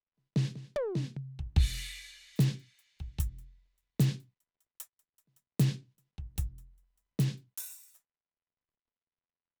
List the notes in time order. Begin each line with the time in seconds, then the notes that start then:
0.18 snare
0.36 snare
0.56 snare
0.76 high tom
0.95 snare
1.17 floor tom
1.39 kick
1.56 kick, crash
2.35 snare, hi-hat pedal
2.40 closed hi-hat
2.59 closed hi-hat
2.79 closed hi-hat
2.99 kick, closed hi-hat
3.19 closed hi-hat, kick
3.39 closed hi-hat
3.78 closed hi-hat
4.00 closed hi-hat, snare
4.20 closed hi-hat
4.40 closed hi-hat
4.61 closed hi-hat
4.80 closed hi-hat
4.99 closed hi-hat
5.18 closed hi-hat
5.27 snare
5.36 closed hi-hat
5.60 closed hi-hat, snare
5.82 snare
5.98 snare, closed hi-hat
6.18 kick, closed hi-hat
6.36 closed hi-hat, kick, snare
6.58 closed hi-hat
6.78 closed hi-hat
6.98 closed hi-hat
7.19 closed hi-hat, snare
7.38 closed hi-hat
7.58 open hi-hat
7.94 hi-hat pedal